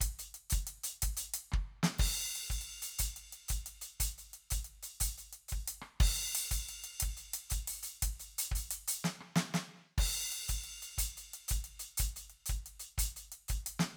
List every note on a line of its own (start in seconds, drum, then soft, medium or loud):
0.01 kick medium
0.01 closed hi-hat loud
0.19 open hi-hat medium
0.35 closed hi-hat medium
0.50 closed hi-hat loud
0.50 kick medium
0.67 closed hi-hat medium
0.84 open hi-hat loud
1.03 kick medium
1.03 closed hi-hat loud
1.17 closed hi-hat loud
1.34 closed hi-hat loud
1.52 kick medium
1.52 cross-stick medium
1.83 snare loud
1.99 kick medium
1.99 crash loud
2.36 open hi-hat medium
2.50 open hi-hat medium
2.50 kick medium
2.62 open hi-hat medium
2.83 open hi-hat loud
2.99 closed hi-hat loud
2.99 kick medium
3.17 open hi-hat medium
3.33 closed hi-hat medium
3.49 closed hi-hat loud
3.49 kick medium
3.66 closed hi-hat medium
3.82 closed hi-hat medium
4.00 closed hi-hat loud
4.00 kick medium
4.18 open hi-hat medium
4.34 closed hi-hat medium
4.51 closed hi-hat loud
4.51 kick medium
4.65 closed hi-hat medium
4.83 open hi-hat medium
5.01 open hi-hat loud
5.01 kick medium
5.18 open hi-hat medium
5.33 closed hi-hat medium
5.49 open hi-hat medium
5.49 kick medium
5.68 closed hi-hat loud
5.82 cross-stick medium
6.01 kick loud
6.01 crash loud
6.35 open hi-hat loud
6.51 open hi-hat loud
6.51 kick medium
6.69 open hi-hat medium
6.84 closed hi-hat medium
7.00 kick medium
7.00 closed hi-hat loud
7.17 closed hi-hat medium
7.34 closed hi-hat loud
7.50 closed hi-hat loud
7.50 kick medium
7.68 open hi-hat loud
7.83 open hi-hat medium
8.03 kick medium
8.03 closed hi-hat loud
8.20 open hi-hat medium
8.39 closed hi-hat loud
8.52 open hi-hat loud
8.52 kick medium
8.57 kick soft
8.71 open hi-hat loud
8.88 open hi-hat loud
9.05 snare loud
9.21 cross-stick medium
9.36 snare loud
9.54 snare loud
9.98 kick medium
9.98 crash loud
10.32 closed hi-hat medium
10.49 closed hi-hat medium
10.49 kick medium
10.64 closed hi-hat medium
10.82 closed hi-hat medium
10.98 closed hi-hat loud
10.98 kick medium
11.18 closed hi-hat medium
11.34 closed hi-hat medium
11.49 closed hi-hat loud
11.49 kick medium
11.65 closed hi-hat medium
11.80 closed hi-hat medium
11.98 closed hi-hat loud
11.98 kick medium
12.17 closed hi-hat medium
12.30 closed hi-hat soft
12.46 closed hi-hat medium
12.46 kick medium
12.66 closed hi-hat medium
12.80 closed hi-hat medium
12.98 closed hi-hat loud
12.98 kick medium
13.17 closed hi-hat medium
13.32 closed hi-hat medium
13.49 closed hi-hat medium
13.49 kick medium
13.67 closed hi-hat loud
13.80 snare loud